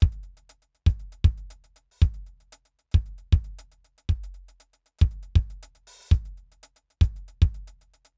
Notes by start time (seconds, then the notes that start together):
0.01 kick, closed hi-hat
0.13 closed hi-hat
0.24 closed hi-hat
0.38 closed hi-hat
0.50 closed hi-hat
0.63 closed hi-hat
0.75 closed hi-hat
0.87 kick, closed hi-hat
1.00 closed hi-hat
1.13 closed hi-hat
1.25 kick, closed hi-hat
1.38 closed hi-hat
1.51 closed hi-hat
1.65 closed hi-hat
1.77 open hi-hat
1.92 open hi-hat
2.01 kick, closed hi-hat, hi-hat pedal
2.15 closed hi-hat
2.27 closed hi-hat
2.41 closed hi-hat
2.53 closed hi-hat
2.66 closed hi-hat
2.80 closed hi-hat
2.92 kick, closed hi-hat
3.07 closed hi-hat
3.19 closed hi-hat
3.33 kick, closed hi-hat
3.45 closed hi-hat
3.59 closed hi-hat
3.72 closed hi-hat
3.85 closed hi-hat
3.99 closed hi-hat
4.10 kick, closed hi-hat
4.24 closed hi-hat
4.35 closed hi-hat
4.49 closed hi-hat
4.61 closed hi-hat
4.74 closed hi-hat
4.87 closed hi-hat
4.99 kick, closed hi-hat
5.12 closed hi-hat
5.23 closed hi-hat
5.36 kick, closed hi-hat
5.51 closed hi-hat
5.63 closed hi-hat
5.76 closed hi-hat
5.88 open hi-hat
6.01 open hi-hat
6.10 kick, closed hi-hat, hi-hat pedal
6.26 closed hi-hat
6.38 closed hi-hat
6.52 closed hi-hat
6.64 closed hi-hat
6.77 closed hi-hat
6.91 closed hi-hat
7.02 kick, closed hi-hat
7.17 closed hi-hat
7.29 closed hi-hat
7.43 kick, closed hi-hat
7.55 closed hi-hat
7.68 closed hi-hat
7.82 closed hi-hat
7.94 closed hi-hat
8.06 closed hi-hat